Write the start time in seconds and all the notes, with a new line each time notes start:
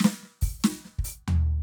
0.01 snare
0.05 snare
0.23 snare
0.42 open hi-hat, kick
0.60 hi-hat pedal
0.64 snare
0.85 snare
0.99 kick
1.05 open hi-hat
1.28 floor tom